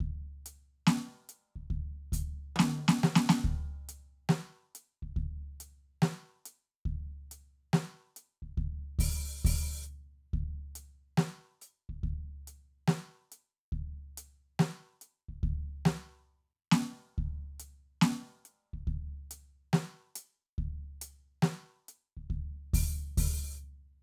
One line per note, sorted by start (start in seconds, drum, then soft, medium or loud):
0.01 kick medium
0.01 crash soft
0.47 closed hi-hat medium
0.88 snare loud
1.30 closed hi-hat medium
1.56 kick soft
1.71 kick medium
1.71 crash soft
1.71 ride soft
2.13 closed hi-hat medium
2.13 kick medium
2.57 snare loud
2.57 high tom loud
2.89 snare loud
2.89 hi-hat pedal soft
3.04 snare loud
3.16 snare loud
3.30 snare loud
3.45 kick loud
3.45 snare soft
3.89 closed hi-hat medium
4.30 snare loud
4.76 closed hi-hat medium
5.03 kick soft
5.17 kick medium
5.17 crash soft
5.17 ride soft
5.61 closed hi-hat medium
6.03 snare loud
6.46 closed hi-hat medium
6.86 kick medium
6.86 snare soft
6.86 crash soft
6.86 ride soft
7.32 closed hi-hat medium
7.74 snare loud
8.17 closed hi-hat medium
8.43 kick soft
8.58 kick medium
8.99 open hi-hat loud
8.99 kick loud
9.41 kick soft
9.45 open hi-hat loud
9.45 kick loud
9.45 snare soft
9.84 hi-hat pedal soft
10.34 kick medium
10.76 closed hi-hat medium
11.18 snare loud
11.62 closed hi-hat medium
11.90 kick soft
12.04 kick medium
12.04 snare soft
12.04 crash soft
12.48 closed hi-hat medium
12.88 snare loud
13.33 closed hi-hat medium
13.73 kick medium
14.18 closed hi-hat medium
14.60 snare loud
15.02 closed hi-hat medium
15.29 kick soft
15.44 kick medium
15.44 snare soft
15.44 crash soft
15.44 ride soft
15.86 snare loud
16.72 snare loud
17.19 kick medium
17.19 snare soft
17.60 closed hi-hat medium
18.02 snare loud
18.46 closed hi-hat soft
18.74 kick soft
18.88 kick medium
18.88 crash soft
18.88 ride soft
19.32 closed hi-hat medium
19.74 snare loud
20.16 closed hi-hat loud
20.59 kick medium
20.59 crash soft
20.59 ride soft
21.02 closed hi-hat medium
21.43 snare loud
21.89 closed hi-hat medium
22.18 kick soft
22.31 kick medium
22.31 crash soft
22.31 ride soft
22.74 open hi-hat loud
22.74 kick loud
23.18 open hi-hat loud
23.18 kick loud
23.55 hi-hat pedal soft